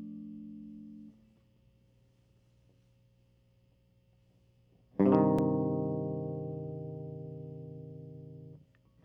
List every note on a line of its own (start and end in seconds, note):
5.01 8.60 G2
5.07 8.57 C3
5.13 8.66 D#3